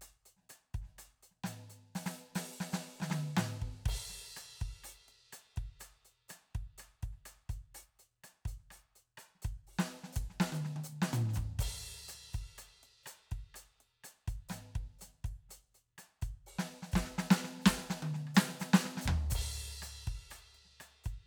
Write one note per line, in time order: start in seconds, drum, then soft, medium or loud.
0.01 open hi-hat medium
0.01 cross-stick soft
0.25 closed hi-hat soft
0.36 snare soft
0.38 snare soft
0.49 closed hi-hat medium
0.49 cross-stick soft
0.74 closed hi-hat soft
0.74 kick soft
0.81 snare soft
0.83 snare soft
0.98 open hi-hat medium
0.98 cross-stick soft
1.22 closed hi-hat soft
1.31 snare soft
1.44 closed hi-hat medium
1.44 snare medium
1.44 hi-hat pedal soft
1.44 mid tom medium
1.70 closed hi-hat medium
1.95 open hi-hat medium
1.95 snare medium
2.06 open hi-hat medium
2.06 snare medium
2.35 open hi-hat medium
2.35 snare medium
2.60 open hi-hat medium
2.60 snare medium
2.71 open hi-hat medium
2.71 snare medium
3.00 snare medium
3.00 high tom medium
3.10 snare medium
3.10 high tom medium
3.37 snare medium
3.37 mid tom loud
3.61 kick soft
3.85 kick medium
3.85 crash medium
3.98 kick soft
4.09 snare soft
4.36 closed hi-hat medium
4.36 cross-stick soft
4.36 snare soft
4.60 kick soft
4.60 closed hi-hat soft
4.84 open hi-hat medium
4.84 cross-stick soft
4.84 hi-hat pedal soft
5.08 closed hi-hat soft
5.32 closed hi-hat medium
5.32 cross-stick soft
5.56 kick soft
5.56 closed hi-hat soft
5.79 closed hi-hat medium
5.79 cross-stick soft
5.79 hi-hat pedal soft
6.05 closed hi-hat soft
6.28 closed hi-hat medium
6.28 cross-stick soft
6.28 snare soft
6.28 hi-hat pedal soft
6.55 kick soft
6.55 closed hi-hat soft
6.78 closed hi-hat medium
6.78 cross-stick soft
7.03 kick soft
7.03 closed hi-hat soft
7.12 snare soft
7.25 closed hi-hat medium
7.25 cross-stick soft
7.49 closed hi-hat soft
7.49 kick soft
7.74 open hi-hat medium
7.74 cross-stick soft
7.99 closed hi-hat soft
8.23 closed hi-hat medium
8.23 cross-stick soft
8.23 snare soft
8.45 closed hi-hat soft
8.45 kick soft
8.59 snare soft
8.70 open hi-hat medium
8.70 cross-stick soft
8.70 snare soft
8.95 closed hi-hat soft
9.17 closed hi-hat medium
9.17 cross-stick soft
9.35 snare soft
9.42 closed hi-hat medium
9.42 kick soft
9.67 open hi-hat soft
9.79 snare medium
9.91 open hi-hat soft
10.03 snare soft
10.12 kick soft
10.12 closed hi-hat medium
10.12 hi-hat pedal medium
10.30 snare soft
10.40 snare loud
10.52 hi-hat pedal medium
10.52 high tom loud
10.64 snare soft
10.76 high tom medium
10.84 hi-hat pedal medium
11.02 snare medium
11.13 hi-hat pedal medium
11.13 mid tom loud
11.28 snare soft
11.33 kick soft
11.33 hi-hat pedal medium
11.33 floor tom medium
11.59 kick soft
11.59 hi-hat pedal loud
11.59 crash medium
11.65 kick soft
11.68 kick soft
12.08 closed hi-hat medium
12.08 cross-stick soft
12.33 closed hi-hat soft
12.33 kick soft
12.56 closed hi-hat medium
12.56 cross-stick soft
12.56 hi-hat pedal soft
12.83 closed hi-hat soft
13.03 closed hi-hat medium
13.03 cross-stick soft
13.03 hi-hat pedal soft
13.31 kick soft
13.31 closed hi-hat soft
13.54 closed hi-hat medium
13.54 cross-stick soft
13.54 snare soft
13.80 closed hi-hat soft
14.04 closed hi-hat medium
14.04 cross-stick soft
14.28 open hi-hat soft
14.28 kick soft
14.36 snare soft
14.49 closed hi-hat medium
14.49 snare soft
14.49 hi-hat pedal medium
14.49 mid tom soft
14.75 kick soft
14.75 snare soft
14.75 closed hi-hat soft
14.98 closed hi-hat medium
14.98 snare soft
14.98 hi-hat pedal soft
15.24 kick soft
15.24 closed hi-hat soft
15.49 closed hi-hat medium
15.49 snare soft
15.49 hi-hat pedal soft
15.74 closed hi-hat soft
15.98 closed hi-hat medium
15.98 cross-stick soft
15.98 snare soft
16.21 closed hi-hat medium
16.21 kick soft
16.46 open hi-hat medium
16.58 snare medium
16.82 snare soft
16.92 kick soft
16.92 snare medium
16.92 hi-hat pedal medium
16.99 kick soft
17.02 kick soft
17.02 snare soft
17.18 snare medium
17.30 snare loud
17.44 snare soft
17.59 snare soft
17.59 hi-hat pedal soft
17.66 kick soft
17.66 snare loud
17.78 snare soft
17.90 snare medium
18.02 hi-hat pedal soft
18.02 high tom loud
18.14 snare soft
18.27 cross-stick soft
18.34 snare loud
18.34 hi-hat pedal medium
18.49 snare soft
18.60 snare medium
18.60 hi-hat pedal medium
18.73 snare loud
18.79 hi-hat pedal medium
18.85 snare soft
18.97 snare medium
19.01 hi-hat pedal loud
19.05 kick soft
19.05 floor tom loud
19.30 kick soft
19.30 hi-hat pedal loud
19.34 kick soft
19.34 crash loud
19.42 kick soft
19.82 closed hi-hat medium
19.82 cross-stick medium
19.82 snare soft
20.07 kick soft
20.07 closed hi-hat soft
20.30 open hi-hat medium
20.30 cross-stick soft
20.54 closed hi-hat soft
20.65 snare soft
20.80 closed hi-hat medium
20.80 cross-stick soft
20.80 snare soft
21.04 closed hi-hat soft
21.04 kick soft